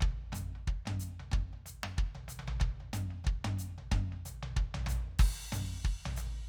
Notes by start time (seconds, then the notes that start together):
0.01 kick, floor tom
0.33 floor tom, hi-hat pedal, high tom
0.56 floor tom
0.68 kick, floor tom
0.86 floor tom, high tom
1.00 hi-hat pedal
1.20 floor tom
1.32 kick, floor tom, high tom
1.53 floor tom
1.66 floor tom, hi-hat pedal
1.84 high tom
1.98 kick, floor tom
2.15 floor tom
2.29 floor tom, hi-hat pedal
2.40 floor tom
2.48 floor tom
2.60 kick, floor tom
2.81 kick, floor tom
2.94 hi-hat pedal, high tom
3.11 floor tom
3.25 kick, floor tom
3.45 high tom
3.58 floor tom, hi-hat pedal
3.78 floor tom
3.92 kick, high tom
4.13 floor tom
4.26 floor tom, hi-hat pedal
4.43 floor tom
4.57 kick, floor tom
4.75 floor tom
4.87 floor tom, hi-hat pedal
5.19 kick, floor tom, crash
5.53 floor tom, hi-hat pedal, high tom
5.85 kick, floor tom
6.06 floor tom
6.17 floor tom, hi-hat pedal